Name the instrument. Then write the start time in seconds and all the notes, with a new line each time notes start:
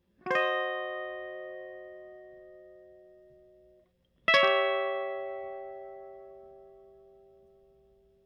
electric guitar
0.27 F#4
0.31 C5
0.36 D#5
4.29 E5
4.34 C#5
4.44 G4